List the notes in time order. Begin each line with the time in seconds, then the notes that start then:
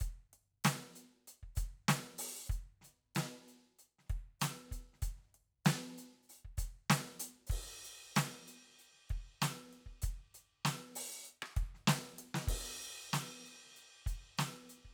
0.01 closed hi-hat, kick
0.34 closed hi-hat
0.65 closed hi-hat, snare
0.77 snare
0.96 closed hi-hat
1.28 closed hi-hat
1.43 kick
1.56 closed hi-hat, kick, hi-hat pedal
1.89 closed hi-hat, snare
2.19 open hi-hat
2.47 kick, hi-hat pedal
2.52 closed hi-hat
2.82 closed hi-hat, snare
3.16 open hi-hat, snare, hi-hat pedal
3.49 closed hi-hat
3.80 closed hi-hat
3.99 snare
4.07 kick, snare, closed hi-hat
4.40 closed hi-hat, snare, hi-hat pedal
4.72 closed hi-hat, kick
4.94 snare
5.03 closed hi-hat, kick
5.08 kick
5.17 snare
5.20 snare
5.23 snare
5.28 snare
5.35 closed hi-hat
5.66 open hi-hat, snare, hi-hat pedal
5.76 snare
5.99 closed hi-hat
6.14 snare
6.18 snare
6.24 hi-hat pedal
6.30 open hi-hat
6.45 kick
6.58 closed hi-hat, kick, hi-hat pedal
6.90 closed hi-hat, snare
7.20 open hi-hat
7.48 kick, hi-hat pedal
7.52 crash
7.56 kick
7.85 closed hi-hat
8.17 closed hi-hat, snare
8.48 closed hi-hat
8.70 snare
8.79 open hi-hat
8.93 snare
9.10 kick, closed hi-hat
9.42 open hi-hat, snare, hi-hat pedal
9.74 closed hi-hat
9.87 kick
10.03 closed hi-hat, kick
10.14 kick
10.35 closed hi-hat, snare
10.66 closed hi-hat, snare
10.96 open hi-hat
11.25 closed hi-hat, hi-hat pedal
11.43 cross-stick
11.57 kick, closed hi-hat
11.63 kick
11.75 snare
11.88 snare
12.02 snare
12.19 closed hi-hat
12.35 snare
12.48 kick, crash
12.54 kick
12.58 kick
12.68 snare
12.73 snare
12.76 snare
12.82 closed hi-hat, snare
13.14 open hi-hat, snare
13.43 closed hi-hat, snare
13.65 snare
13.71 snare
13.74 closed hi-hat, snare
14.07 closed hi-hat, kick
14.15 kick
14.39 open hi-hat, snare, hi-hat pedal
14.70 closed hi-hat
14.86 kick